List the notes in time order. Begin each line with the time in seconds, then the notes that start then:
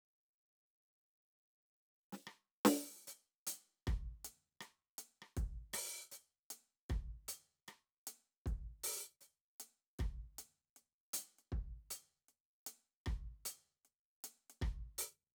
2.12 snare
2.27 cross-stick
2.65 open hi-hat, snare
3.07 closed hi-hat, hi-hat pedal
3.47 closed hi-hat
3.87 kick, cross-stick, closed hi-hat
4.25 closed hi-hat
4.61 cross-stick, closed hi-hat
4.98 closed hi-hat
5.22 cross-stick
5.37 kick, closed hi-hat
5.73 open hi-hat, cross-stick
6.11 closed hi-hat, hi-hat pedal
6.50 closed hi-hat
6.89 kick, cross-stick, closed hi-hat
7.28 closed hi-hat
7.68 cross-stick, closed hi-hat
8.07 closed hi-hat
8.46 kick, closed hi-hat
8.83 open hi-hat
9.21 closed hi-hat, hi-hat pedal
9.60 closed hi-hat
9.99 kick, cross-stick, closed hi-hat
10.38 closed hi-hat
10.76 closed hi-hat
11.13 closed hi-hat
11.38 closed hi-hat
11.52 kick
11.90 closed hi-hat
12.28 closed hi-hat
12.66 closed hi-hat
13.06 kick, cross-stick, closed hi-hat
13.45 closed hi-hat
13.85 closed hi-hat
14.24 closed hi-hat
14.50 closed hi-hat
14.61 kick, cross-stick
14.98 open hi-hat